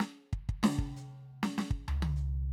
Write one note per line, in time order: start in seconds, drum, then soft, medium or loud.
0.00 snare medium
0.33 kick soft
0.49 kick soft
0.63 snare loud
0.63 high tom loud
0.79 kick soft
0.97 hi-hat pedal medium
1.43 snare medium
1.58 snare medium
1.71 kick soft
1.88 floor tom loud
2.02 high tom loud
2.16 hi-hat pedal soft